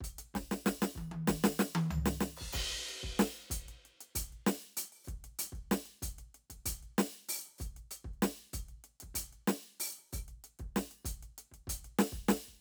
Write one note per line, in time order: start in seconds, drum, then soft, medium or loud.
0.01 closed hi-hat medium
0.01 kick soft
0.19 closed hi-hat medium
0.34 kick soft
0.34 snare medium
0.52 snare medium
0.65 kick soft
0.65 snare loud
0.82 snare loud
0.96 kick soft
0.96 high tom medium
1.12 high tom medium
1.28 kick soft
1.28 snare loud
1.44 snare loud
1.60 snare loud
1.75 high tom loud
1.91 floor tom medium
2.06 snare loud
2.21 snare loud
2.37 crash medium
2.41 kick soft
2.53 kick medium
2.53 ride loud
2.89 closed hi-hat soft
3.04 kick medium
3.20 snare loud
3.35 closed hi-hat soft
3.51 closed hi-hat loud
3.51 kick medium
3.69 closed hi-hat soft
3.86 closed hi-hat soft
4.01 closed hi-hat medium
4.16 closed hi-hat loud
4.16 kick medium
4.33 closed hi-hat soft
4.47 snare loud
4.62 closed hi-hat soft
4.77 closed hi-hat loud
4.93 open hi-hat soft
5.05 kick soft
5.05 hi-hat pedal soft
5.09 closed hi-hat soft
5.24 closed hi-hat soft
5.39 closed hi-hat loud
5.53 kick soft
5.53 closed hi-hat soft
5.72 snare loud
5.86 closed hi-hat soft
6.03 closed hi-hat medium
6.03 kick medium
6.19 closed hi-hat soft
6.35 closed hi-hat soft
6.50 kick soft
6.50 closed hi-hat medium
6.66 closed hi-hat loud
6.66 kick medium
6.83 closed hi-hat soft
6.99 snare loud
7.13 closed hi-hat soft
7.29 open hi-hat loud
7.46 open hi-hat soft
7.59 closed hi-hat medium
7.59 kick medium
7.59 hi-hat pedal soft
7.77 closed hi-hat soft
7.91 closed hi-hat medium
8.05 kick soft
8.14 closed hi-hat soft
8.23 snare loud
8.37 closed hi-hat soft
8.54 closed hi-hat medium
8.54 kick medium
8.69 closed hi-hat soft
8.84 closed hi-hat soft
9.01 kick soft
9.01 closed hi-hat medium
9.15 closed hi-hat loud
9.15 kick soft
9.33 closed hi-hat soft
9.48 snare loud
9.64 closed hi-hat soft
9.80 open hi-hat loud
9.99 open hi-hat soft
10.13 open hi-hat medium
10.13 kick medium
10.13 hi-hat pedal medium
10.28 closed hi-hat soft
10.44 closed hi-hat medium
10.59 kick soft
10.59 closed hi-hat soft
10.76 snare loud
10.91 closed hi-hat soft
11.05 closed hi-hat medium
11.05 kick medium
11.23 closed hi-hat soft
11.38 closed hi-hat medium
11.52 kick soft
11.52 closed hi-hat soft
11.68 closed hi-hat loud
11.68 kick soft
11.85 closed hi-hat soft
11.99 snare loud
12.13 kick soft
12.13 closed hi-hat soft
12.29 snare loud
12.48 kick soft